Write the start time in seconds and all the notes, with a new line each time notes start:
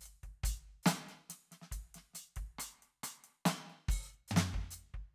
0.01 hi-hat pedal
0.06 closed hi-hat
0.23 kick, closed hi-hat
0.43 open hi-hat, kick
0.83 closed hi-hat, snare, hi-hat pedal
1.08 snare, closed hi-hat
1.29 snare, closed hi-hat
1.51 snare, closed hi-hat
1.62 snare
1.71 kick, closed hi-hat
1.94 snare, closed hi-hat
2.14 closed hi-hat, snare
2.36 kick, closed hi-hat
2.59 closed hi-hat, cross-stick
2.82 closed hi-hat
3.03 closed hi-hat, cross-stick
3.24 closed hi-hat
3.45 closed hi-hat, snare
3.70 closed hi-hat
3.88 open hi-hat, kick
4.28 hi-hat pedal, high tom
4.36 snare
4.54 kick
4.71 hi-hat pedal
4.94 kick